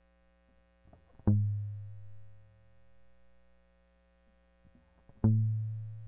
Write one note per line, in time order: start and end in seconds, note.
5.27 6.00 A2